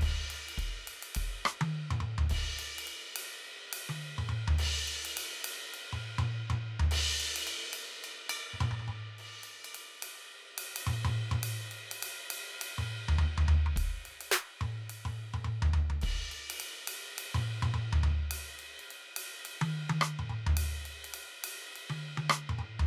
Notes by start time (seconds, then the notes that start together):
0.01 kick, ride
0.30 ride
0.48 ride
0.58 kick, ride
0.87 ride
1.03 ride
1.15 kick, ride
1.45 cross-stick
1.61 high tom
1.90 mid tom
2.00 mid tom
2.18 floor tom
2.30 kick, ride
2.59 ride
2.78 ride
2.87 ride
3.16 ride
3.73 ride
3.89 high tom
4.18 mid tom
4.29 mid tom
4.48 floor tom
4.58 ride
4.87 ride
5.05 ride
5.17 ride
5.44 ride
5.74 ride
5.93 mid tom
6.18 mid tom
6.50 mid tom
6.79 floor tom
6.91 ride
7.20 ride
7.36 ride
7.47 ride bell
7.73 ride
8.04 ride bell
8.29 ride bell
8.53 mid tom
8.60 mid tom
8.71 mid tom
8.79 mid tom
8.88 mid tom
9.18 ride
9.43 ride
9.64 ride bell
9.75 ride
10.02 ride
10.58 ride
10.76 ride
10.87 mid tom
11.05 mid tom
11.31 mid tom
11.43 ride
11.71 ride
11.91 ride
12.03 ride
12.30 ride
12.61 ride
12.78 mid tom
13.08 floor tom
13.18 floor tom
13.38 floor tom
13.48 floor tom
13.66 floor tom
13.76 kick, ride
14.05 ride
14.21 ride
14.31 snare
14.61 mid tom
14.90 ride
15.05 mid tom
15.34 mid tom
15.44 mid tom
15.62 floor tom
15.73 floor tom
15.90 floor tom
16.02 kick, ride
16.31 ride
16.50 ride
16.60 ride
16.87 ride
17.18 ride
17.34 mid tom
17.62 mid tom
17.74 mid tom
17.93 floor tom
18.03 floor tom
18.31 ride
18.59 ride
18.79 ride
18.90 ride
19.16 ride
19.45 ride
19.61 high tom
19.89 high tom
20.01 cross-stick
20.19 mid tom
20.29 mid tom
20.46 floor tom
20.57 ride
20.85 ride
21.04 ride
21.14 ride
21.44 ride
21.76 ride
21.90 high tom
22.17 high tom
22.30 cross-stick
22.49 mid tom
22.59 mid tom
22.79 floor tom